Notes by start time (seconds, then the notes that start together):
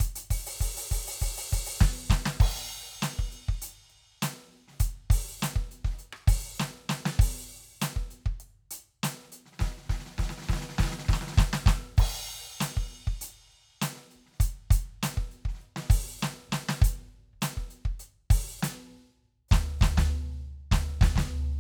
0.01 closed hi-hat, kick
0.16 closed hi-hat
0.31 open hi-hat, kick
0.47 open hi-hat
0.61 open hi-hat, kick
0.78 open hi-hat
0.92 open hi-hat, kick
1.08 open hi-hat
1.22 open hi-hat, kick
1.38 open hi-hat
1.53 open hi-hat, kick
1.67 open hi-hat
1.81 kick, snare
2.11 kick, snare
2.26 snare
2.41 kick, hi-hat pedal, crash
2.96 kick
3.03 closed hi-hat, snare
3.20 kick
3.33 closed hi-hat
3.49 kick
3.63 closed hi-hat
3.91 closed hi-hat
4.23 closed hi-hat, snare
4.41 snare
4.69 snare
4.71 snare
4.81 closed hi-hat, kick
5.11 open hi-hat, kick
5.42 closed hi-hat, snare, hi-hat pedal
5.57 kick
5.72 closed hi-hat
5.85 kick, snare
5.89 snare
5.93 snare
5.98 closed hi-hat, snare
6.01 snare
6.13 cross-stick
6.28 open hi-hat, kick
6.58 snare, hi-hat pedal
6.90 snare
7.06 snare
7.20 open hi-hat, kick
7.81 closed hi-hat, snare, hi-hat pedal
7.97 kick
8.11 closed hi-hat
8.27 kick, crash
8.41 closed hi-hat
8.72 closed hi-hat
9.04 closed hi-hat, snare
9.24 snare
9.33 closed hi-hat
9.46 snare
9.53 snare
9.57 snare, hi-hat pedal
9.60 kick, snare
9.65 snare
9.72 snare
9.78 snare
9.82 snare
9.86 snare
9.90 kick, snare
9.95 snare
9.99 snare
10.06 snare
10.11 snare
10.15 snare
10.19 kick, snare
10.23 snare
10.27 snare
10.30 snare
10.38 snare
10.43 snare
10.46 snare
10.50 kick, snare
10.54 snare
10.58 snare
10.62 snare
10.70 snare
10.75 snare
10.79 kick, snare
10.84 snare
10.88 snare
10.92 snare
11.00 snare
11.05 snare
11.09 kick, snare
11.14 snare
11.22 snare
11.28 snare
11.33 snare
11.38 kick, snare
11.54 snare
11.67 kick, snare
11.98 kick, hi-hat pedal, crash
12.31 closed hi-hat
12.61 closed hi-hat, kick, snare
12.78 kick
12.91 closed hi-hat
13.08 kick, crash
13.12 ride
13.22 closed hi-hat
13.53 closed hi-hat
13.82 closed hi-hat, snare
13.96 snare
14.11 closed hi-hat, snare
14.16 kick
14.27 snare
14.32 snare
14.34 snare
14.41 closed hi-hat, kick
14.71 closed hi-hat, kick
15.04 closed hi-hat, snare
15.18 kick
15.32 closed hi-hat
15.46 kick, snare
15.51 ride
15.55 snare
15.59 snare, closed hi-hat
15.77 snare
15.91 open hi-hat, kick
16.22 snare, hi-hat pedal
16.50 kick, snare
16.70 snare
16.82 closed hi-hat, kick
17.34 kick
17.42 closed hi-hat, snare, hi-hat pedal
17.58 kick
17.71 closed hi-hat
17.86 kick
17.91 ride
18.00 closed hi-hat
18.31 open hi-hat, kick
18.61 closed hi-hat, snare, hi-hat pedal
19.49 kick, snare, floor tom, hi-hat pedal
19.80 kick, snare, floor tom, hi-hat pedal
19.98 kick, snare, floor tom
20.07 hi-hat pedal
20.72 kick, snare, floor tom
21.02 kick, snare, floor tom
21.16 kick, snare, floor tom